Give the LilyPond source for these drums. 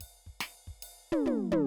\new DrumStaff \drummode { \time 4/4 \tempo 4 = 144 \tuplet 3/2 { <bd cymr>8 r8 bd8 <sn cymr>8 r8 bd8 cymr8 r8 <tomfh tommh>8 <tomfh tommh>8 r8 <tommh tomfh>8 } | }